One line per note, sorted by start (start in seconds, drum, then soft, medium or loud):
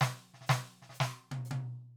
0.00 snare loud
0.00 hi-hat pedal medium
0.34 snare soft
0.41 snare soft
0.47 snare loud
0.47 hi-hat pedal medium
0.82 snare soft
0.89 snare soft
0.94 hi-hat pedal medium
1.00 snare loud
1.31 high tom loud
1.45 hi-hat pedal medium
1.51 high tom loud